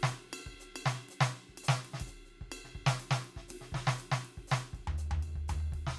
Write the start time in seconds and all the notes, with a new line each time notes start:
0.03 snare, hi-hat pedal
0.12 snare
0.33 ride bell
0.46 kick
0.60 hi-hat pedal
0.76 ride bell
0.86 snare
0.94 snare
1.09 hi-hat pedal, ride
1.21 snare
1.32 hi-hat pedal
1.49 kick
1.57 ride bell
1.64 hi-hat pedal
1.68 snare
1.85 ride
1.93 snare
2.00 kick, ride bell
2.07 hi-hat pedal
2.25 hi-hat pedal
2.41 kick
2.52 hi-hat pedal, ride bell
2.64 snare
2.74 kick, ride
2.81 kick
2.86 snare
2.99 hi-hat pedal, ride
3.11 snare
3.24 ride
3.36 kick, snare
3.42 kick
3.48 hi-hat pedal, ride
3.61 snare
3.72 kick, snare
3.78 kick
3.87 snare
3.97 hi-hat pedal, ride
4.12 snare
4.25 ride
4.37 kick
4.45 kick, hi-hat pedal
4.51 snare, ride bell
4.73 kick, ride bell
4.79 kick
4.87 floor tom
4.98 hi-hat pedal, ride bell
5.11 floor tom
5.19 hi-hat pedal, ride bell
5.35 kick
5.48 floor tom, hi-hat pedal, ride bell
5.60 floor tom
5.72 kick, ride
5.78 kick
5.87 snare